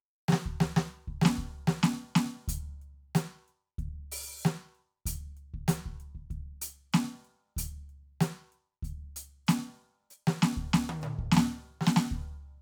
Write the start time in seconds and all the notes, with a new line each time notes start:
0.29 snare, hi-hat pedal
0.33 snare
0.46 kick
0.61 snare
0.77 snare
1.08 kick
1.22 snare
1.26 snare
1.39 kick
1.68 snare
1.84 snare
2.16 snare
2.49 closed hi-hat, kick
2.82 closed hi-hat
3.16 closed hi-hat, snare
3.49 closed hi-hat
3.79 kick, closed hi-hat
4.13 open hi-hat
4.44 snare, closed hi-hat, hi-hat pedal
4.76 closed hi-hat
5.06 closed hi-hat, kick
5.38 closed hi-hat
5.55 kick
5.69 closed hi-hat, snare
5.86 kick
6.01 closed hi-hat
6.16 kick
6.31 kick, closed hi-hat
6.62 open hi-hat
6.94 snare, closed hi-hat, hi-hat pedal
7.26 closed hi-hat
7.57 closed hi-hat, kick
7.90 closed hi-hat
8.21 closed hi-hat, snare
8.53 closed hi-hat
8.83 closed hi-hat, kick
9.17 open hi-hat
9.48 closed hi-hat, snare, hi-hat pedal
10.11 hi-hat pedal
10.28 snare
10.40 snare, hi-hat pedal
10.58 kick
10.69 hi-hat pedal
10.74 snare
10.90 high tom
11.02 hi-hat pedal, mid tom
11.19 kick
11.33 snare
11.38 snare
11.82 snare
11.88 snare
11.97 snare
12.12 kick